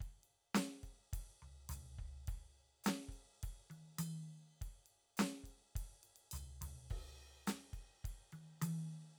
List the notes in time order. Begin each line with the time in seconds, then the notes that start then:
0.01 kick, ride
0.24 ride
0.55 snare, hi-hat pedal, ride
0.84 kick, ride
1.13 kick, ride
1.43 floor tom
1.70 floor tom, hi-hat pedal, ride
1.99 kick
2.28 kick, ride
2.84 snare, hi-hat pedal, ride
3.09 kick, ride
3.43 kick, ride
3.70 high tom, ride
3.99 hi-hat pedal, high tom, ride bell
4.62 kick, ride
4.86 ride
5.17 snare, hi-hat pedal, ride
5.44 kick, ride
5.76 kick, ride
6.04 ride
6.16 ride
6.32 floor tom, hi-hat pedal, ride bell
6.62 floor tom, ride
6.91 kick, crash
7.47 snare, hi-hat pedal, ride
7.74 kick, ride
8.05 kick, ride
8.33 high tom, ride
8.62 hi-hat pedal, high tom, ride